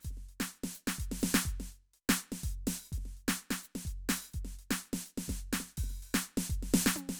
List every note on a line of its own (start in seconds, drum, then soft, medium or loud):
0.01 hi-hat pedal medium
0.05 closed hi-hat medium
0.05 kick soft
0.11 snare soft
0.18 snare soft
0.29 closed hi-hat soft
0.41 snare medium
0.46 hi-hat pedal soft
0.54 closed hi-hat soft
0.64 snare medium
0.73 closed hi-hat soft
0.73 hi-hat pedal medium
0.88 snare medium
0.99 closed hi-hat medium
0.99 kick soft
1.12 snare medium
1.20 snare medium
1.20 hi-hat pedal medium
1.35 snare loud
1.46 closed hi-hat medium
1.46 kick soft
1.52 kick soft
1.60 snare soft
1.72 closed hi-hat soft
1.94 closed hi-hat soft
2.10 snare loud
2.21 closed hi-hat soft
2.32 snare medium
2.44 open hi-hat medium
2.44 kick soft
2.50 kick soft
2.68 open hi-hat medium
2.68 snare medium
2.86 hi-hat pedal soft
2.93 closed hi-hat medium
2.93 kick soft
2.98 kick soft
2.98 snare soft
3.06 snare soft
3.17 closed hi-hat soft
3.29 snare loud
3.41 closed hi-hat soft
3.51 snare medium
3.62 hi-hat pedal medium
3.76 snare medium
3.86 closed hi-hat medium
3.86 kick soft
4.09 open hi-hat loud
4.09 snare medium
4.30 hi-hat pedal soft
4.34 closed hi-hat medium
4.34 kick soft
4.45 snare soft
4.55 snare soft
4.59 closed hi-hat soft
4.71 snare medium
4.84 closed hi-hat soft
4.94 snare medium
5.05 closed hi-hat soft
5.05 hi-hat pedal medium
5.18 snare medium
5.29 closed hi-hat medium
5.29 kick soft
5.29 snare medium
5.53 closed hi-hat medium
5.53 snare medium
5.61 snare soft
5.78 open hi-hat medium
5.78 kick soft
5.84 kick soft
5.84 snare soft
5.91 snare soft
6.03 open hi-hat soft
6.15 snare loud
6.19 hi-hat pedal soft
6.28 closed hi-hat soft
6.38 snare medium
6.50 closed hi-hat medium
6.50 kick soft
6.56 kick soft
6.59 kick soft
6.59 snare soft
6.74 snare loud
6.87 snare loud
6.96 hi-hat pedal loud
6.96 high tom medium
7.09 snare medium